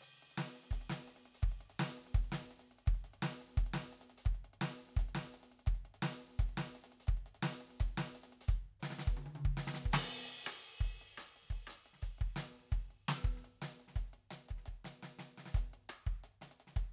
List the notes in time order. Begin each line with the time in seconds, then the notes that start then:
0.01 hi-hat pedal
0.23 closed hi-hat
0.32 closed hi-hat
0.38 snare
0.48 closed hi-hat
0.56 closed hi-hat
0.64 closed hi-hat
0.71 kick, closed hi-hat
0.82 closed hi-hat
0.90 snare
0.99 closed hi-hat
1.08 closed hi-hat
1.17 closed hi-hat
1.26 closed hi-hat
1.35 closed hi-hat
1.43 kick, closed hi-hat
1.52 closed hi-hat
1.61 closed hi-hat
1.70 closed hi-hat
1.80 snare
1.90 closed hi-hat
1.97 closed hi-hat
2.07 closed hi-hat
2.15 kick, closed hi-hat
2.25 closed hi-hat
2.32 snare
2.41 closed hi-hat
2.51 closed hi-hat
2.60 closed hi-hat
2.72 closed hi-hat
2.79 closed hi-hat
2.87 kick, closed hi-hat
2.95 closed hi-hat
3.05 closed hi-hat
3.14 closed hi-hat
3.23 snare
3.33 closed hi-hat
3.42 closed hi-hat
3.50 closed hi-hat
3.58 kick, closed hi-hat
3.67 closed hi-hat
3.74 snare
3.85 closed hi-hat
3.93 closed hi-hat
4.02 closed hi-hat
4.10 closed hi-hat
4.18 closed hi-hat
4.26 kick, closed hi-hat
4.35 closed hi-hat
4.45 closed hi-hat
4.54 closed hi-hat
4.62 snare
4.72 closed hi-hat
4.82 closed hi-hat
4.89 closed hi-hat
4.97 kick, closed hi-hat
5.09 closed hi-hat
5.15 snare
5.27 closed hi-hat
5.35 closed hi-hat
5.44 closed hi-hat
5.52 closed hi-hat
5.60 closed hi-hat
5.67 kick, closed hi-hat
5.75 closed hi-hat
5.86 closed hi-hat
5.95 closed hi-hat
6.03 snare
6.13 closed hi-hat
6.23 closed hi-hat
6.31 closed hi-hat
6.40 kick, closed hi-hat
6.50 closed hi-hat
6.58 snare
6.68 closed hi-hat
6.76 closed hi-hat
6.84 closed hi-hat
6.92 closed hi-hat
7.00 closed hi-hat
7.08 kick, closed hi-hat
7.18 closed hi-hat
7.27 closed hi-hat
7.35 closed hi-hat
7.43 snare
7.53 closed hi-hat
7.61 closed hi-hat
7.71 closed hi-hat
7.81 kick, closed hi-hat
7.90 closed hi-hat
7.98 snare
8.08 closed hi-hat
8.15 closed hi-hat
8.24 closed hi-hat
8.33 closed hi-hat
8.41 closed hi-hat
8.48 open hi-hat, kick
8.80 snare, hi-hat pedal
8.91 snare
8.99 snare
9.08 kick
9.17 high tom
9.26 high tom
9.36 high tom
9.46 kick
9.57 snare
9.68 snare
9.74 snare
9.86 kick
9.93 snare, crash
9.98 cross-stick
10.29 closed hi-hat
10.47 open hi-hat, cross-stick
10.62 hi-hat pedal
10.69 closed hi-hat
10.81 kick, closed hi-hat
11.02 closed hi-hat
11.18 closed hi-hat, cross-stick
11.36 closed hi-hat
11.43 snare
11.51 kick, closed hi-hat
11.67 closed hi-hat, cross-stick
11.86 closed hi-hat
11.94 snare
12.02 closed hi-hat, kick
12.19 kick, closed hi-hat
12.36 open hi-hat, cross-stick, snare
12.59 snare
12.66 snare
12.71 kick, closed hi-hat, hi-hat pedal
12.91 closed hi-hat
13.09 closed hi-hat, snare
13.25 kick, closed hi-hat
13.37 snare
13.45 closed hi-hat
13.62 snare, closed hi-hat
13.80 closed hi-hat
13.88 snare
13.96 kick, closed hi-hat
14.14 closed hi-hat
14.31 snare, closed hi-hat
14.49 kick, closed hi-hat
14.58 snare
14.66 kick, closed hi-hat
14.85 snare, closed hi-hat
15.03 snare, closed hi-hat
15.19 snare, closed hi-hat
15.38 snare, closed hi-hat
15.46 snare
15.55 kick, closed hi-hat
15.74 closed hi-hat
15.90 cross-stick, closed hi-hat
16.07 kick, closed hi-hat
16.24 closed hi-hat
16.42 snare, closed hi-hat
16.52 closed hi-hat
16.60 closed hi-hat
16.68 snare
16.77 kick, closed hi-hat